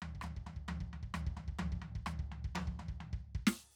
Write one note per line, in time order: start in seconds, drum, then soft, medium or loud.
0.02 floor tom medium
0.15 kick soft
0.21 cross-stick medium
0.21 floor tom medium
0.37 kick soft
0.46 floor tom medium
0.56 kick soft
0.68 floor tom medium
0.68 high tom medium
0.80 kick soft
0.93 floor tom soft
1.03 kick soft
1.14 cross-stick medium
1.14 floor tom medium
1.27 kick soft
1.37 floor tom medium
1.48 kick soft
1.59 floor tom medium
1.59 high tom medium
1.72 kick soft
1.82 floor tom soft
1.95 kick soft
2.06 cross-stick medium
2.06 floor tom medium
2.19 kick soft
2.32 floor tom soft
2.44 kick soft
2.55 floor tom medium
2.55 high tom medium
2.67 kick soft
2.79 floor tom medium
2.88 kick soft
3.00 floor tom soft
3.13 kick soft
3.35 kick soft
3.47 snare loud
3.47 ride medium
3.71 hi-hat pedal soft